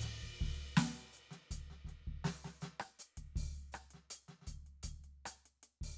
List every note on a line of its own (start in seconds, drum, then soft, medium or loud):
0.00 snare soft
0.00 hi-hat pedal medium
0.23 kick soft
0.41 kick medium
0.41 crash soft
0.77 open hi-hat medium
0.77 snare loud
1.13 hi-hat pedal soft
1.17 closed hi-hat soft
1.31 snare soft
1.31 closed hi-hat soft
1.51 closed hi-hat medium
1.51 kick soft
1.70 snare soft
1.85 kick soft
1.85 snare soft
1.89 closed hi-hat soft
2.08 kick soft
2.25 open hi-hat medium
2.25 snare medium
2.45 snare soft
2.61 snare soft
2.61 hi-hat pedal soft
2.80 cross-stick medium
2.99 hi-hat pedal medium
3.18 kick soft
3.18 closed hi-hat soft
3.36 open hi-hat medium
3.36 kick medium
3.73 cross-stick medium
3.73 closed hi-hat soft
3.73 hi-hat pedal soft
3.91 snare soft
3.91 closed hi-hat soft
4.11 closed hi-hat medium
4.29 snare soft
4.29 closed hi-hat soft
4.42 snare soft
4.47 closed hi-hat soft
4.47 kick soft
4.67 closed hi-hat soft
4.83 closed hi-hat medium
4.83 kick soft
5.04 closed hi-hat soft
5.26 closed hi-hat medium
5.26 cross-stick medium
5.46 closed hi-hat soft
5.63 closed hi-hat soft
5.82 open hi-hat medium
5.82 kick soft